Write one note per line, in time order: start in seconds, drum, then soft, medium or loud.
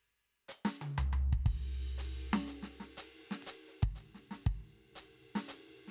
0.48 hi-hat pedal medium
0.65 snare medium
0.81 high tom medium
0.98 floor tom loud
0.98 hi-hat pedal medium
1.13 floor tom medium
1.32 kick soft
1.46 kick medium
1.46 ride medium
1.46 crash medium
1.98 hi-hat pedal medium
1.98 ride medium
2.33 snare medium
2.33 ride medium
2.47 hi-hat pedal medium
2.47 ride soft
2.63 snare soft
2.80 snare soft
2.97 hi-hat pedal medium
2.97 ride medium
3.31 snare soft
3.42 ride soft
3.47 hi-hat pedal medium
3.68 hi-hat pedal soft
3.82 kick medium
3.82 ride medium
3.95 hi-hat pedal medium
4.01 ride soft
4.15 snare soft
4.31 snare soft
4.46 kick soft
4.46 ride medium
4.95 hi-hat pedal medium
5.00 ride soft
5.35 snare soft
5.35 ride medium
5.48 hi-hat pedal medium
5.48 ride soft
5.88 snare soft